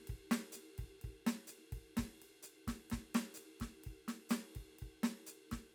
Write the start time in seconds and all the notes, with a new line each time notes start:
0.01 snare
0.04 snare
0.05 snare, hi-hat pedal, ride
0.10 kick
0.15 kick
0.32 snare, ride
0.53 hi-hat pedal, ride
0.57 snare
0.79 kick, ride
0.85 kick
1.02 kick, ride
1.10 kick
1.27 snare, ride
1.48 hi-hat pedal, ride
1.59 snare
1.73 kick, ride
1.78 kick
1.98 kick, snare, ride
2.04 kick
2.23 ride
2.43 hi-hat pedal, ride
2.68 kick, snare, ride
2.91 kick, snare, ride
2.99 kick
3.15 snare, ride
3.35 hi-hat pedal, ride
3.61 kick, snare, ride
3.84 kick, ride
4.09 snare, ride
4.30 snare, hi-hat pedal, ride
4.56 kick, ride
4.71 snare
4.74 snare
4.79 kick, ride
5.04 snare, ride
5.27 hi-hat pedal, ride
5.52 kick, snare, ride